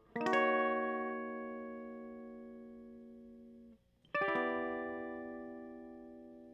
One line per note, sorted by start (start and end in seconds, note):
0.16 3.78 A#3
0.21 3.72 D#4
0.26 3.66 F#4
0.33 3.02 C#5
4.15 4.21 B4
4.15 6.54 D5
4.22 6.54 G4
4.28 6.54 E4
4.36 6.54 B3